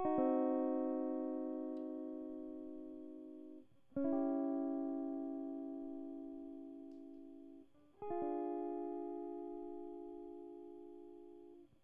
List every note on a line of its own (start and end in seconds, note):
0.00 3.59 F#4
0.06 3.66 D#4
0.19 3.66 C4
3.97 7.66 C#4
4.05 7.72 E4
4.15 7.72 G4
8.04 11.56 G#4
8.12 11.68 F4
8.23 9.99 D4